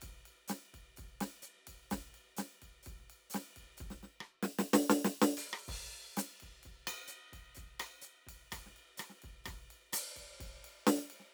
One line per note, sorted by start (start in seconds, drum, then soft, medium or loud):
0.01 kick soft
0.01 hi-hat pedal soft
0.01 ride medium
0.08 kick soft
0.26 ride soft
0.48 snare medium
0.48 hi-hat pedal medium
0.48 ride medium
0.74 kick soft
0.74 ride soft
0.78 snare soft
0.96 kick soft
0.96 hi-hat pedal soft
0.96 ride soft
1.04 kick soft
1.21 snare medium
1.21 ride medium
1.42 hi-hat pedal medium
1.56 snare soft
1.67 kick soft
1.67 ride medium
1.90 kick soft
1.90 snare medium
1.90 hi-hat pedal soft
1.90 ride medium
2.14 ride soft
2.37 snare medium
2.37 hi-hat pedal medium
2.37 ride medium
2.62 kick soft
2.62 ride soft
2.83 kick soft
2.83 hi-hat pedal soft
2.83 ride medium
2.92 kick soft
2.99 snare soft
3.03 snare soft
3.10 ride soft
3.30 hi-hat pedal medium
3.30 ride medium
3.35 snare medium
3.56 kick soft
3.56 ride soft
3.62 snare soft
3.77 kick soft
3.77 hi-hat pedal soft
3.77 ride medium
3.86 kick soft
3.90 snare soft
4.03 snare soft
4.21 cross-stick medium
4.43 snare medium
4.59 snare loud
4.74 snare loud
4.90 snare loud
5.05 snare loud
5.22 snare loud
5.37 closed hi-hat medium
5.53 cross-stick medium
5.68 kick soft
5.68 crash medium
6.17 snare medium
6.17 hi-hat pedal loud
6.17 ride medium
6.40 kick soft
6.40 snare soft
6.40 ride soft
6.63 kick soft
6.63 hi-hat pedal soft
6.63 ride soft
6.70 kick soft
6.87 cross-stick medium
6.87 ride bell loud
7.08 hi-hat pedal medium
7.08 ride soft
7.33 kick soft
7.33 ride soft
7.38 kick soft
7.55 kick soft
7.55 hi-hat pedal soft
7.55 ride soft
7.63 kick soft
7.80 cross-stick medium
7.80 ride bell medium
8.02 hi-hat pedal medium
8.02 ride soft
8.27 kick soft
8.27 ride medium
8.51 kick soft
8.51 cross-stick medium
8.51 hi-hat pedal soft
8.51 ride medium
8.57 kick soft
8.66 snare soft
8.76 ride soft
8.98 cross-stick medium
8.98 hi-hat pedal medium
8.98 ride medium
9.10 snare soft
9.22 kick soft
9.22 ride soft
9.29 kick soft
9.44 kick soft
9.44 cross-stick medium
9.44 hi-hat pedal soft
9.44 ride medium
9.53 kick soft
9.71 ride soft
9.93 cross-stick medium
9.93 hi-hat pedal loud
9.93 ride medium
10.16 kick soft
10.16 ride soft
10.40 kick soft
10.40 ride medium
10.46 kick soft
10.64 ride medium
10.87 snare loud
10.87 ride medium
10.97 snare soft
11.10 ride medium
11.20 snare soft